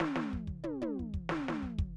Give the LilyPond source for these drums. \new DrumStaff \drummode { \time 4/4 \tempo 4 = 122 \tuplet 3/2 { <tomfh sn>8 <sn tomfh>8 bd8 bd8 <tommh tomfh>8 <tommh tomfh>8 bd8 bd8 <sn tomfh>8 <sn tomfh>8 bd8 bd8 } | }